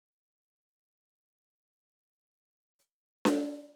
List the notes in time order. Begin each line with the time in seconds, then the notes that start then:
2.79 hi-hat pedal
3.25 snare
3.34 snare